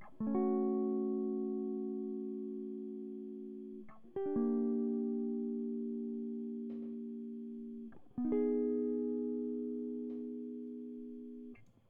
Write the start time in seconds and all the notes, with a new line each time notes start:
0.21 A3
0.28 C#4
0.35 F#4
4.17 G4
4.26 D4
4.37 A#3
8.19 B3
8.25 D#4
8.33 G#4